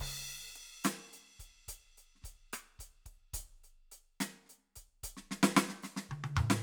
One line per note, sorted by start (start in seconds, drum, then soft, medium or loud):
0.01 kick soft
0.01 crash loud
0.07 kick soft
0.30 closed hi-hat soft
0.56 closed hi-hat soft
0.85 closed hi-hat loud
0.85 snare medium
1.14 closed hi-hat soft
1.40 closed hi-hat soft
1.40 kick soft
1.69 closed hi-hat medium
1.69 kick soft
1.98 closed hi-hat soft
2.16 snare soft
2.22 closed hi-hat soft
2.22 kick soft
2.22 snare soft
2.54 closed hi-hat medium
2.54 cross-stick medium
2.80 closed hi-hat soft
2.80 kick soft
2.80 snare soft
3.06 kick soft
3.06 closed hi-hat soft
3.34 closed hi-hat medium
3.34 kick soft
3.40 kick soft
3.64 closed hi-hat soft
3.92 closed hi-hat soft
4.21 closed hi-hat medium
4.21 snare medium
4.46 closed hi-hat soft
4.46 snare soft
4.76 closed hi-hat medium
4.76 kick soft
5.04 closed hi-hat medium
5.04 kick soft
5.18 snare soft
5.32 snare medium
5.44 snare loud
5.57 snare loud
5.57 hi-hat pedal medium
5.70 snare soft
5.83 snare medium
5.83 hi-hat pedal soft
5.97 snare medium
6.10 kick soft
6.10 high tom medium
6.25 high tom loud
6.36 kick soft
6.36 mid tom loud
6.51 snare loud